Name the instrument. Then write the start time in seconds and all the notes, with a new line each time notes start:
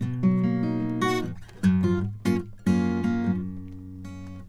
acoustic guitar
0.02 B2
0.24 F#3
0.45 A#3
0.64 D#4
1.02 F#4
1.24 F2
1.65 F#2
1.84 F3 C#4 F4
2.26 F#2 A#3 C#4 F4
2.68 F#2 A#3 C#4 F4
3.05 A#3
3.28 F#2